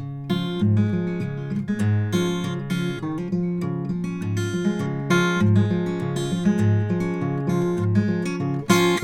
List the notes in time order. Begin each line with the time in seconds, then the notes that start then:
0.01 C#3
0.30 F3 C#4 F4
0.62 G#2
0.78 G#3
0.94 F3
1.08 C#4
1.21 C#3
1.51 F3
1.69 G#3
1.81 G#2
2.13 F3 C#4 F4
2.45 C#3
2.71 F3 C#4 F4
3.03 D#3
3.18 F3 C#4
3.34 F3
3.44 C#4
3.63 C#3
3.91 F3
4.05 C#4
4.23 G#2
4.38 F4
4.55 F3
4.66 G#3
4.81 C#3
5.11 F3 C#4 F4
5.41 G#2
5.57 G#3
5.71 F3
5.87 C#4
6.01 C#3
6.17 F4
6.33 F3
6.46 G#3
6.59 G#2
6.91 F3
7.01 C#4
7.23 C#3
7.48 F3 C#4 F4
7.78 G#2
7.96 G#3
8.09 F3
8.24 C#3 C#4
8.41 C#3
8.70 F3 C#4 F4